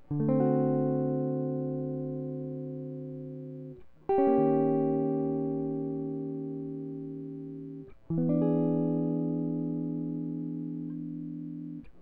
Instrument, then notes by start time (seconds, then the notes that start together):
electric guitar
0.12 D3
0.20 A3
0.29 C4
0.40 F#4
4.10 G4
4.19 C#4
4.28 D#3 A#3
8.03 E3
8.11 E3
8.18 B3
8.29 D4
8.42 G#4